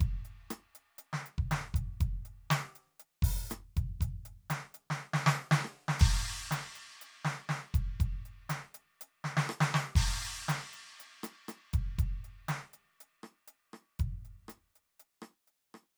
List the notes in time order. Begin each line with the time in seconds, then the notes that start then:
0.01 kick, closed hi-hat
0.26 open hi-hat
0.51 open hi-hat, cross-stick
0.76 open hi-hat
0.99 open hi-hat
1.14 snare
1.27 open hi-hat
1.39 kick
1.52 closed hi-hat, snare
1.60 open hi-hat
1.75 closed hi-hat, kick
2.01 kick, closed hi-hat
2.26 open hi-hat
2.51 open hi-hat, snare
2.60 open hi-hat
2.76 open hi-hat
3.00 closed hi-hat
3.23 kick, open hi-hat
3.51 cross-stick, closed hi-hat, hi-hat pedal
3.77 kick, closed hi-hat
4.01 kick, open hi-hat
4.26 open hi-hat
4.51 open hi-hat, snare
4.75 open hi-hat
4.91 snare
5.14 snare
5.27 snare
5.52 snare
5.65 cross-stick
5.89 snare
6.00 kick, crash
6.52 snare, open hi-hat
6.76 open hi-hat
7.02 open hi-hat
7.26 snare
7.50 snare
7.75 kick, closed hi-hat
8.01 kick, closed hi-hat
8.26 open hi-hat
8.50 snare, open hi-hat
8.75 open hi-hat
9.02 open hi-hat
9.25 snare
9.38 snare
9.50 cross-stick
9.61 snare
9.75 snare
9.96 kick, crash
10.25 open hi-hat
10.49 open hi-hat, snare
10.74 open hi-hat
11.01 open hi-hat
11.24 closed hi-hat, cross-stick
11.49 closed hi-hat, cross-stick
11.74 closed hi-hat, kick
11.99 closed hi-hat, kick
12.25 open hi-hat
12.49 open hi-hat, snare
12.74 open hi-hat
13.01 open hi-hat
13.24 cross-stick
13.48 open hi-hat
13.74 cross-stick
14.00 closed hi-hat, kick
14.26 closed hi-hat
14.49 cross-stick, closed hi-hat
14.76 closed hi-hat
15.00 closed hi-hat
15.23 cross-stick
15.48 closed hi-hat
15.75 cross-stick